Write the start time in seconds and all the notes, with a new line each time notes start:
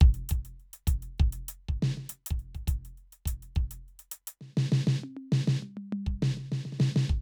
0.01 kick, closed hi-hat
0.15 closed hi-hat
0.29 closed hi-hat, kick
0.45 closed hi-hat
0.60 closed hi-hat
0.74 closed hi-hat
0.88 closed hi-hat, kick
1.03 closed hi-hat
1.19 kick, closed hi-hat
1.33 closed hi-hat
1.49 closed hi-hat
1.69 kick
1.83 snare
1.98 snare
2.10 closed hi-hat
2.27 closed hi-hat
2.31 kick
2.40 closed hi-hat
2.55 kick, closed hi-hat
2.68 closed hi-hat, kick
2.85 closed hi-hat
2.98 closed hi-hat
3.13 closed hi-hat
3.26 closed hi-hat, kick
3.43 closed hi-hat
3.56 kick, closed hi-hat
3.71 closed hi-hat
3.89 closed hi-hat
4.00 closed hi-hat
4.12 closed hi-hat
4.28 closed hi-hat
4.42 snare
4.58 snare
4.73 snare
4.88 snare
5.04 high tom
5.17 high tom
5.33 snare
5.48 snare
5.63 mid tom
5.78 mid tom
5.93 mid tom
6.07 kick
6.23 snare, floor tom
6.38 snare
6.52 snare
6.66 snare
6.73 snare
6.80 snare
6.96 snare
7.10 kick